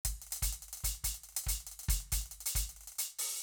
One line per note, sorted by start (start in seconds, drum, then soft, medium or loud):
0.04 kick medium
0.04 closed hi-hat loud
0.22 closed hi-hat medium
0.27 closed hi-hat soft
0.31 closed hi-hat soft
0.31 closed hi-hat loud
0.36 closed hi-hat medium
0.42 closed hi-hat loud
0.42 kick medium
0.53 closed hi-hat medium
0.62 closed hi-hat medium
0.68 closed hi-hat soft
0.73 closed hi-hat medium
0.77 closed hi-hat medium
0.80 kick medium
0.80 closed hi-hat soft
0.84 closed hi-hat loud
0.95 closed hi-hat soft
1.04 closed hi-hat loud
1.04 kick soft
1.14 closed hi-hat medium
1.23 closed hi-hat medium
1.29 closed hi-hat soft
1.32 kick soft
1.32 closed hi-hat soft
1.35 closed hi-hat soft
1.36 closed hi-hat loud
1.44 kick medium
1.44 closed hi-hat medium
1.48 closed hi-hat loud
1.60 closed hi-hat soft
1.67 closed hi-hat medium
1.71 closed hi-hat medium
1.79 closed hi-hat medium
1.83 closed hi-hat medium
1.88 closed hi-hat loud
1.88 kick medium
2.00 closed hi-hat soft
2.12 closed hi-hat loud
2.12 kick medium
2.21 closed hi-hat medium
2.26 closed hi-hat soft
2.31 closed hi-hat medium
2.40 closed hi-hat medium
2.46 closed hi-hat loud
2.55 closed hi-hat loud
2.55 kick medium
2.69 closed hi-hat medium
2.76 closed hi-hat soft
2.81 closed hi-hat soft
2.83 closed hi-hat soft
2.87 closed hi-hat medium
2.92 closed hi-hat soft
2.95 closed hi-hat soft
2.98 closed hi-hat loud
3.19 open hi-hat loud